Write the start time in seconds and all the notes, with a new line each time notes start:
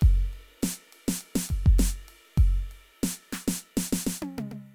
0.01 kick, ride
0.33 ride
0.62 snare, ride
0.92 ride
1.08 snare
1.21 ride
1.35 snare
1.49 kick, ride
1.66 kick
1.79 snare, ride
2.08 ride
2.37 kick, ride
2.71 ride
3.03 snare, ride
3.32 snare
3.48 snare
3.77 snare
3.92 snare
4.06 snare
4.22 high tom
4.38 mid tom
4.51 mid tom